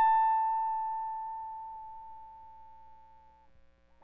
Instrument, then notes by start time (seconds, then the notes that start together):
electric guitar
0.00 A5